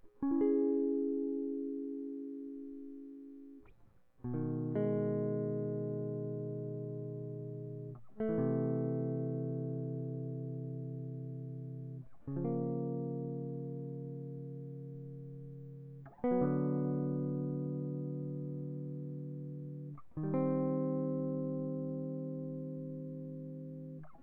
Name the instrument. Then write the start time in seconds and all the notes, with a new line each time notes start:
electric guitar
0.23 C#4
0.32 E4
0.42 G#4
4.26 B2
4.35 D#3
4.76 G#3
8.21 A3
8.30 E3
8.40 C3
12.29 C#3
12.38 F3
12.46 A#3
16.25 B3
16.32 F#3
16.43 D3
20.18 D#3
20.24 G3
20.34 C4